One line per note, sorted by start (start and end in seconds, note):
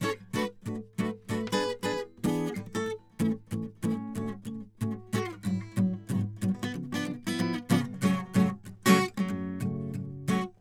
0.03 0.17 C#4
0.03 0.14 E4
0.03 0.16 A4
0.03 0.20 C#5
0.34 0.50 A3
0.34 0.51 D4
0.34 0.52 F#4
0.34 0.55 B4
0.67 0.85 A3
0.67 0.83 D4
0.67 0.84 F#4
0.67 0.85 B4
0.99 1.16 A3
0.99 1.16 D4
0.99 1.16 F#4
0.99 1.19 B4
1.30 1.49 A3
1.30 1.44 D4
1.30 1.44 F#4
1.30 1.52 B4
1.53 1.75 B3
1.53 1.71 D4
1.53 1.76 G#4
1.53 1.77 B4
1.84 2.05 B3
1.84 2.01 D4
1.84 2.07 G#4
1.84 2.06 B4
2.25 2.54 E3
2.25 2.55 B3
2.25 2.53 D4
2.25 2.57 G#4
2.25 2.42 B4
2.60 2.73 A4
2.75 2.95 A3
2.75 2.90 C#4
2.75 2.96 E4
2.75 3.00 A4
3.20 3.39 E3
3.20 3.40 A3
3.20 3.41 C#4
3.20 3.40 E4
3.52 3.72 E3
3.52 3.71 A3
3.52 3.73 C#4
3.84 4.00 E3
3.84 3.99 A3
3.84 4.16 C#4
3.84 4.05 E4
4.16 4.37 D3
4.16 4.39 A3
4.16 4.39 C#4
4.16 4.40 F#4
4.46 4.65 D3
4.46 4.68 A3
4.46 4.70 C#4
4.81 4.93 C#3
4.81 5.01 A3
4.81 5.01 C#4
4.81 5.14 F#4
5.14 5.25 A3
5.14 5.26 C#4
5.14 5.39 F#4
5.44 5.62 G#2
5.44 5.64 F#3
5.73 6.00 G#2
5.78 5.99 F#3
5.78 5.91 B3
5.78 5.91 D4
6.10 6.23 G#2
6.10 6.28 F#3
6.10 6.27 B3
6.10 6.35 D4
6.42 6.53 G#2
6.42 6.55 F#3
6.42 6.55 B3
6.65 6.75 B3
6.75 6.90 C#3
6.75 6.89 F3
6.75 6.95 B3
6.95 7.04 F3
6.95 7.05 B3
6.95 7.18 D4
7.06 7.25 C#3
7.06 7.17 F3
7.06 7.20 B3
7.27 7.37 F3
7.27 7.40 B3
7.27 7.41 E4
7.40 7.61 F3
7.40 7.62 B3
7.40 7.62 E4
7.70 7.88 C#3
7.70 7.83 F3
7.70 7.88 B3
7.70 7.83 D4
8.02 8.19 F#2
8.02 8.25 C#3
8.02 8.25 F#3
8.02 8.21 G#3
8.02 8.20 C#4
8.02 8.26 F#4
8.35 8.53 F#2
8.35 8.59 C#3
8.35 8.59 F#3
8.35 8.60 A3
8.35 8.50 C#4
8.35 8.60 F#4
8.66 8.77 F2
8.86 9.05 F#2
8.86 9.11 C#3
8.86 9.10 F#3
8.86 9.05 A3
8.86 9.04 C#4
8.86 9.13 F#4
9.18 9.61 F#3
9.18 9.62 A3
9.18 9.64 C#4
9.30 9.60 F#2
9.61 10.46 F#2
9.61 9.94 C#3
9.61 9.94 F#3
9.61 9.96 A3
9.94 10.31 C#3
9.94 10.05 F#3
10.29 10.53 F#3
10.29 10.52 A3
10.29 10.53 C#4
10.29 10.48 F#4